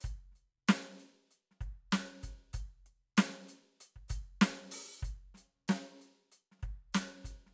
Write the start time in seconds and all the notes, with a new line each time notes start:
0.01 kick, hi-hat pedal
0.05 closed hi-hat
0.32 closed hi-hat, snare
0.68 open hi-hat, snare
0.99 closed hi-hat
1.31 closed hi-hat
1.51 snare
1.61 kick, closed hi-hat
1.91 closed hi-hat, snare, hi-hat pedal
2.23 closed hi-hat, kick
2.53 closed hi-hat, kick
2.86 closed hi-hat
3.17 closed hi-hat, snare
3.29 snare
3.49 closed hi-hat
3.80 closed hi-hat
3.96 kick
4.08 closed hi-hat, kick, hi-hat pedal
4.41 closed hi-hat, snare
4.71 open hi-hat
4.99 kick, hi-hat pedal
5.04 closed hi-hat
5.34 closed hi-hat, snare
5.68 open hi-hat, snare, hi-hat pedal
6.01 closed hi-hat
6.32 closed hi-hat
6.52 snare
6.59 kick, snare, closed hi-hat
6.93 closed hi-hat, snare, hi-hat pedal
7.25 closed hi-hat, kick
7.46 snare